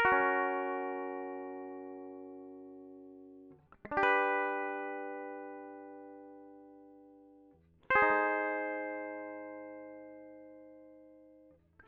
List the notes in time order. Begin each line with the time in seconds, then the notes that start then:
0.00 A#4
0.05 F#4
0.12 C#4
3.86 G#3
3.92 D4
3.98 G4
4.03 B4
7.91 C5
7.96 G#4
8.03 D#4
8.11 A3